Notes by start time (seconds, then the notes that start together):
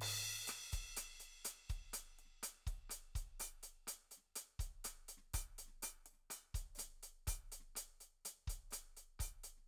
0.01 crash
0.47 closed hi-hat, cross-stick
0.72 closed hi-hat, kick
0.97 closed hi-hat, cross-stick
1.20 closed hi-hat
1.45 closed hi-hat, cross-stick
1.69 closed hi-hat, kick
1.93 closed hi-hat, cross-stick, snare
2.19 closed hi-hat
2.25 snare
2.43 closed hi-hat, cross-stick
2.67 kick, closed hi-hat
2.90 closed hi-hat, cross-stick, hi-hat pedal
3.15 closed hi-hat, kick
3.40 open hi-hat, cross-stick
3.63 closed hi-hat
3.87 closed hi-hat, cross-stick, snare
4.11 closed hi-hat
4.17 snare
4.36 closed hi-hat, cross-stick
4.59 closed hi-hat, kick
4.84 closed hi-hat, cross-stick
5.08 closed hi-hat
5.17 snare
5.34 open hi-hat, kick, cross-stick
5.58 closed hi-hat
5.66 snare
5.82 open hi-hat, cross-stick
6.06 closed hi-hat
6.13 snare
6.30 open hi-hat, cross-stick
6.54 closed hi-hat, kick
6.75 closed hi-hat, snare, hi-hat pedal
7.03 closed hi-hat
7.27 open hi-hat, kick, cross-stick, snare, hi-hat pedal
7.52 closed hi-hat
7.60 snare
7.76 closed hi-hat, cross-stick
8.01 closed hi-hat
8.25 closed hi-hat, snare
8.47 closed hi-hat, kick
8.71 closed hi-hat, cross-stick, hi-hat pedal
8.97 closed hi-hat
9.19 open hi-hat, kick, cross-stick, hi-hat pedal
9.44 closed hi-hat
9.57 snare